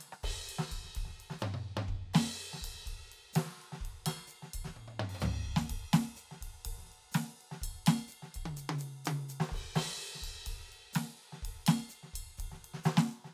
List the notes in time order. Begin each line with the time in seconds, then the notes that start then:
0.01 ride bell
0.13 cross-stick
0.21 kick, hi-hat pedal, crash
0.29 kick
0.36 kick
0.49 ride bell
0.59 snare
0.72 kick, ride bell
0.84 snare
0.95 kick, ride
1.03 kick, snare
1.21 ride
1.30 snare
1.39 hi-hat pedal, mid tom
1.54 mid tom
1.77 mid tom
1.88 kick
1.95 kick
1.99 kick
2.10 kick, crash
2.15 snare
2.35 hi-hat pedal
2.54 snare
2.60 kick, hi-hat pedal
2.64 ride
2.74 snare
2.79 snare
2.82 snare
2.85 kick, snare, ride
2.92 kick
2.94 kick
3.12 ride
3.33 snare, hi-hat pedal, ride
3.46 snare
3.62 ride
3.73 snare
3.81 kick, hi-hat pedal
3.85 kick, ride
4.06 snare, ride bell
4.28 hi-hat pedal, ride
4.43 snare
4.54 kick, ride bell
4.62 kick, snare
4.77 kick, mid tom
4.88 mid tom
5.00 mid tom
5.10 ride
5.15 mid tom
5.21 hi-hat pedal, floor tom
5.34 cross-stick
5.46 kick
5.57 snare
5.70 kick, ride
5.77 kick
5.94 snare, ride
6.17 hi-hat pedal, ride
6.32 snare
6.42 kick, ride
6.65 kick, ride
6.77 snare
6.81 snare
6.84 snare
6.92 ride
7.12 snare, hi-hat pedal, ride
7.41 ride
7.52 snare
7.62 kick, hi-hat pedal, ride bell
7.68 kick
7.87 snare, ride bell
8.08 hi-hat pedal
8.13 ride
8.23 snare
8.35 kick, ride bell
8.46 high tom
8.57 hi-hat pedal, ride
8.70 high tom
8.79 hi-hat pedal, ride
9.05 hi-hat pedal, high tom, ride
9.29 hi-hat pedal, ride
9.40 snare
9.49 kick, cross-stick
9.54 hi-hat pedal, crash
9.76 snare, crash
10.15 snare
10.22 kick, hi-hat pedal, ride
10.47 kick, ride
10.54 kick
10.72 ride
10.93 snare, hi-hat pedal, ride
11.21 ride
11.33 snare
11.43 kick, hi-hat pedal, ride
11.67 snare, ride bell
11.89 hi-hat pedal
11.94 ride
12.03 snare
12.14 kick, ride bell
12.38 kick, hi-hat pedal, ride
12.45 kick
12.52 snare
12.65 ride
12.74 snare
12.84 snare, hi-hat pedal
12.98 snare
13.12 ride
13.25 snare